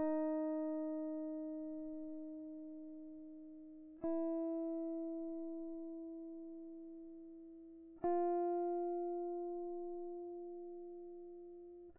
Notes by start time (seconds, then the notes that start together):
0.00 D#4
4.04 E4
8.04 F4